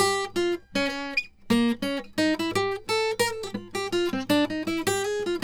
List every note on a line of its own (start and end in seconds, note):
0.00 0.30 G4
0.37 0.62 F4
0.76 0.92 C#4
1.51 1.77 A#3
1.83 2.06 C#4
2.19 2.38 D#4
2.40 2.56 E4
2.57 2.82 G4
2.90 3.16 A4
3.21 3.30 A#4
3.30 3.44 A4
3.45 3.59 G4
3.76 3.92 G4
3.94 4.16 F4
4.31 4.48 D4
4.51 4.66 D#4
4.68 4.85 E4
4.88 5.05 G4
5.05 5.29 G#4
5.28 5.41 F4